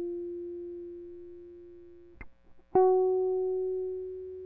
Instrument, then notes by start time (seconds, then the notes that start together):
electric guitar
2.76 F#4